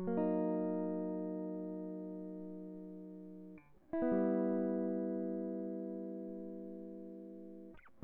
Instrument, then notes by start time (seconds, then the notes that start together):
electric guitar
0.00 F#3
0.08 A#3
0.18 D#4
3.93 E4
4.02 B3
4.12 G3